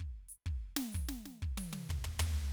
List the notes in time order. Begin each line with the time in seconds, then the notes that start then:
0.00 kick
0.28 hi-hat pedal
0.46 kick
0.76 snare
0.92 kick, hi-hat pedal
1.08 snare
1.25 snare
1.42 kick
1.57 hi-hat pedal, high tom
1.73 high tom
1.89 kick, floor tom
2.04 floor tom
2.19 floor tom, hi-hat pedal